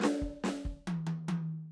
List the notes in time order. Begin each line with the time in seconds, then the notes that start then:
0.00 snare
0.03 snare
0.22 kick
0.44 snare
0.46 snare
0.65 kick
0.87 high tom
1.07 high tom
1.28 high tom